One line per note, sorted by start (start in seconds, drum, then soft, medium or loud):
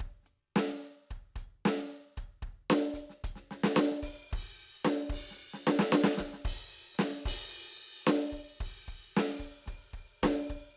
0.01 kick medium
0.01 closed hi-hat soft
0.23 snare soft
0.23 closed hi-hat soft
0.56 snare loud
0.85 closed hi-hat medium
1.11 closed hi-hat medium
1.11 kick soft
1.36 closed hi-hat medium
1.36 kick soft
1.66 snare loud
1.91 closed hi-hat soft
2.18 closed hi-hat medium
2.18 kick soft
2.43 kick soft
2.43 closed hi-hat soft
2.71 snare loud
2.94 closed hi-hat medium
2.94 kick soft
3.10 snare soft
3.24 closed hi-hat loud
3.24 kick medium
3.36 snare soft
3.51 snare medium
3.64 snare loud
3.77 snare loud
3.91 snare soft
4.03 open hi-hat loud
4.03 kick soft
4.31 kick medium
4.31 hi-hat pedal medium
4.31 crash medium
4.85 snare loud
5.10 kick medium
5.10 crash medium
5.31 snare soft
5.36 hi-hat pedal medium
5.54 snare soft
5.67 snare loud
5.80 snare loud
5.91 snare loud
5.91 hi-hat pedal soft
6.04 snare loud
6.18 kick soft
6.18 snare medium
6.34 snare soft
6.45 kick medium
6.45 crash medium
6.95 hi-hat pedal medium
6.99 snare loud
7.26 kick medium
7.26 crash loud
7.52 hi-hat pedal soft
7.78 closed hi-hat soft
8.05 closed hi-hat loud
8.05 snare loud
8.05 hi-hat pedal medium
8.33 open hi-hat soft
8.33 kick soft
8.61 kick medium
8.61 crash medium
8.86 kick soft
8.86 open hi-hat soft
9.17 open hi-hat loud
9.17 snare loud
9.40 open hi-hat soft
9.40 kick soft
9.66 open hi-hat medium
9.66 kick soft
9.66 snare soft
9.94 open hi-hat soft
9.94 kick soft
10.23 open hi-hat medium
10.23 kick soft
10.23 snare loud
10.46 snare soft
10.50 open hi-hat medium
10.50 kick soft